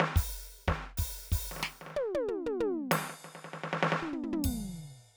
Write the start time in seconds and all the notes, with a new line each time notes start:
0.00 snare
0.16 open hi-hat, kick
0.67 kick, snare
0.97 open hi-hat, kick
1.32 open hi-hat, kick
1.51 snare
1.56 snare
1.60 snare
1.63 snare
1.81 snare
1.86 snare
1.90 snare
1.96 high tom
2.14 high tom
2.28 mid tom
2.46 mid tom
2.60 mid tom
2.91 snare, ride
3.10 snare
3.24 snare
3.35 snare
3.44 snare
3.53 snare
3.63 snare
3.73 snare
3.83 snare
3.92 snare
4.01 floor tom
4.12 floor tom
4.23 floor tom
4.32 floor tom
4.44 kick, ride